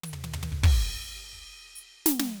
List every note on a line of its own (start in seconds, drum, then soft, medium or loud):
0.03 hi-hat pedal medium
0.03 mid tom medium
0.13 floor tom medium
0.24 mid tom medium
0.34 floor tom loud
0.43 mid tom loud
0.52 kick soft
0.63 kick loud
0.63 crash loud
1.33 kick soft
1.75 hi-hat pedal loud
2.06 snare loud
2.19 snare loud